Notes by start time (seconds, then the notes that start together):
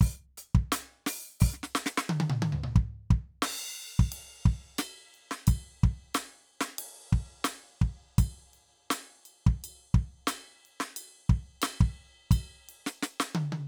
0.01 open hi-hat, kick, snare
0.05 snare
0.37 closed hi-hat
0.55 kick
0.72 closed hi-hat, snare
1.06 open hi-hat, snare
1.40 open hi-hat, kick
1.53 snare
1.63 snare
1.75 snare
1.86 snare, hi-hat pedal
1.97 snare
2.02 hi-hat pedal
2.09 high tom
2.20 high tom
2.30 mid tom
2.42 high tom
2.52 floor tom
2.64 mid tom
2.76 kick
3.11 kick
3.42 snare, crash
3.99 kick
4.12 ride
4.45 kick
4.78 snare, ride bell
5.14 ride
5.31 snare
5.47 kick, ride bell
5.83 kick
6.14 snare, ride bell
6.61 snare
6.68 snare
6.78 ride
7.12 kick
7.44 snare, ride bell
7.81 kick
8.18 kick, ride bell
8.53 floor tom, ride
8.90 snare, ride bell
9.25 ride bell
9.46 kick
9.64 ride bell
9.94 kick
10.27 snare, ride bell
10.65 ride
10.80 snare
10.96 ride bell
11.29 kick, snare
11.62 snare, ride bell
11.81 kick
12.31 kick, ride bell
12.69 ride
12.86 snare
13.03 snare, hi-hat pedal
13.20 snare
13.35 high tom
13.52 high tom